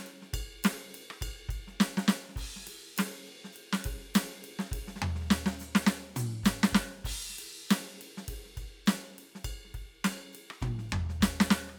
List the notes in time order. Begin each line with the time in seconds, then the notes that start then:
0.01 hi-hat pedal
0.07 ride
0.23 snare
0.34 kick, snare, ride bell
0.41 kick
0.46 kick
0.63 snare, hi-hat pedal, ride
0.71 cross-stick
0.95 ride
1.11 cross-stick
1.21 kick, hi-hat pedal, ride bell
1.28 kick
1.31 kick
1.50 kick, ride bell
1.56 kick
1.68 snare
1.81 snare, hi-hat pedal
1.98 snare
2.07 snare, hi-hat pedal
2.30 snare
2.34 kick, hi-hat pedal, crash
2.43 kick
2.46 kick
2.57 snare
2.68 snare, ride
2.97 snare, hi-hat pedal, ride
3.25 hi-hat pedal, ride
3.45 snare
3.53 hi-hat pedal, ride
3.73 snare
3.85 kick, ride
3.93 kick
3.96 kick
4.15 snare, hi-hat pedal, ride
4.24 snare
4.45 ride
4.60 snare
4.72 kick, ride
4.79 kick
4.82 kick
4.88 snare
4.97 snare
5.03 floor tom
5.16 snare
5.22 snare
5.31 snare
5.47 snare
5.60 snare, hi-hat pedal
5.76 snare
5.87 snare
6.17 hi-hat pedal, mid tom
6.44 kick, snare, hi-hat pedal
6.64 snare
6.73 kick, snare
7.05 kick, crash
7.11 kick
7.14 kick
7.30 snare
7.39 ride
7.70 snare, hi-hat pedal, ride
7.81 snare
8.02 ride
8.18 snare
8.25 hi-hat pedal
8.29 kick, ride
8.34 kick
8.46 snare
8.51 snare
8.54 kick, snare
8.58 ride bell
8.64 kick
8.66 kick
8.87 snare, hi-hat pedal, ride bell
8.94 snare
9.14 hi-hat pedal
9.19 ride
9.36 snare
9.44 kick, hi-hat pedal, ride bell
9.51 kick
9.66 snare
9.71 kick, snare
9.75 ride
10.05 snare, hi-hat pedal, ride bell
10.34 hi-hat pedal, ride
10.51 cross-stick
10.61 kick, hi-hat pedal, mid tom
10.68 kick
10.71 kick
10.79 snare
10.90 kick, hi-hat pedal, floor tom
11.10 snare
11.21 kick, snare, hi-hat pedal
11.41 snare
11.51 snare
11.70 cross-stick